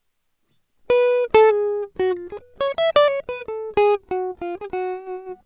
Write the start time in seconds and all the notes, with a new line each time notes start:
0.91 B4
1.36 A4
1.51 G#4
2.01 F#4
2.12 F4
2.62 C#5
2.79 E5
2.97 D5
3.09 C#5
3.30 B4
3.50 A4
3.79 G#4
4.13 F#4
4.43 F4
4.63 G4
4.75 F#4